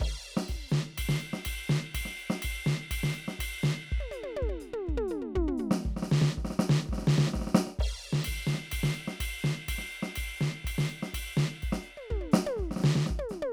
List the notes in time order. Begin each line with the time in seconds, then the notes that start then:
0.01 kick, crash
0.21 hi-hat pedal
0.37 snare
0.49 kick, ride, floor tom
0.56 kick
0.69 snare, hi-hat pedal
0.98 kick, ride bell
1.05 kick, snare
1.18 hi-hat pedal, ride
1.34 snare
1.45 kick, ride bell
1.52 kick
1.65 hi-hat pedal
1.70 snare
1.95 kick, ride bell
2.01 kick
2.06 snare
2.16 hi-hat pedal, ride
2.30 snare
2.42 kick, ride bell
2.51 kick
2.64 snare, hi-hat pedal
2.91 kick, ride bell
2.97 kick
3.04 snare
3.12 hi-hat pedal, ride
3.28 snare
3.40 kick, ride bell
3.45 kick
3.61 snare, hi-hat pedal
3.92 kick
3.99 kick, high tom
4.03 kick
4.11 hi-hat pedal, high tom
4.24 high tom
4.37 high tom
4.43 kick
4.49 kick, high tom
4.60 hi-hat pedal, mid tom
4.73 mid tom
4.87 kick, mid tom
4.96 kick, mid tom
5.08 hi-hat pedal, mid tom
5.22 mid tom
5.35 kick, floor tom
5.44 kick, floor tom
5.58 hi-hat pedal, floor tom
5.71 snare
5.84 kick, snare
5.89 kick, snare
5.92 snare
5.97 snare
6.03 snare
6.09 snare, hi-hat pedal
6.22 snare
6.32 snare
6.38 kick, snare
6.45 snare
6.51 snare
6.60 snare, hi-hat pedal
6.70 snare
6.80 snare
6.86 kick, snare
6.92 kick, snare
6.98 snare
7.03 snare
7.08 snare, hi-hat pedal
7.18 snare
7.28 snare
7.34 kick, snare
7.40 kick, snare
7.42 snare
7.47 snare
7.55 snare, hi-hat pedal
7.67 snare
7.79 kick, crash
7.84 kick
7.93 kick
8.02 hi-hat pedal
8.13 snare
8.25 kick, ride bell
8.34 kick
8.47 snare, hi-hat pedal
8.54 snare
8.72 kick, ride bell
8.79 kick
8.84 snare
8.94 hi-hat pedal, ride
9.08 snare
9.21 kick, ride
9.40 hi-hat pedal
9.44 snare
9.69 kick, ride bell
9.75 kick, snare
9.88 hi-hat pedal, ride
10.03 snare
10.16 kick, ride bell
10.24 kick
10.36 hi-hat pedal
10.41 snare
10.65 kick, ride bell
10.71 kick
10.79 snare
10.84 hi-hat pedal
10.89 ride
11.03 snare
11.14 kick, ride bell
11.20 kick
11.34 snare, hi-hat pedal
11.63 kick, ride bell
11.70 kick, snare
11.83 hi-hat pedal
11.97 closed hi-hat, high tom
12.10 kick, mid tom
12.18 kick, high tom
12.32 snare, hi-hat pedal
12.47 high tom
12.57 kick, snare
12.63 snare
12.71 snare
12.77 snare
12.81 snare, hi-hat pedal
12.84 snare
12.96 snare
13.07 kick, snare
13.17 kick, high tom
13.29 snare, hi-hat pedal
13.42 high tom